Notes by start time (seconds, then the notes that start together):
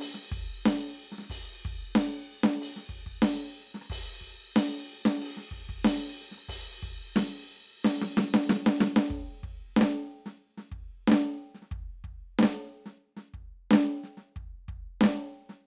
0.01 crash
0.15 snare
0.32 kick
0.66 snare, crash
0.74 snare
0.80 snare
1.12 snare
1.19 snare
1.22 snare
1.24 snare
1.30 kick, crash
1.65 kick
1.96 snare, crash
2.11 snare
2.44 snare
2.62 crash
2.77 snare
2.89 kick
3.07 kick
3.22 snare, crash
3.75 snare
3.82 cross-stick
3.85 cross-stick
3.90 kick, crash
4.21 kick
4.56 snare, crash
5.06 snare
5.22 crash
5.37 snare
5.51 kick
5.69 kick
5.85 snare, crash
6.32 snare
6.38 cross-stick
6.49 kick, crash
6.83 kick
7.16 snare, crash
7.84 snare, crash
8.02 snare
8.18 snare
8.34 snare
8.50 snare
8.67 snare
8.81 snare
8.97 snare
9.11 kick
9.44 kick
9.77 snare
9.82 snare
10.26 snare
10.58 snare
10.72 kick
11.08 snare
11.12 snare
11.55 snare
11.62 snare
11.72 kick
12.04 kick
12.39 snare
12.43 snare
12.86 snare
13.17 snare
13.34 kick
13.71 snare
13.74 snare
14.04 snare
14.18 snare
14.36 kick
14.69 kick
15.01 snare
15.04 snare
15.50 snare